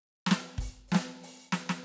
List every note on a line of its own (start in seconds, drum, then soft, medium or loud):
0.26 snare loud
0.31 snare loud
0.58 open hi-hat loud
0.58 kick medium
0.88 snare loud
0.88 hi-hat pedal soft
0.95 snare loud
1.23 open hi-hat medium
1.52 snare loud
1.69 snare loud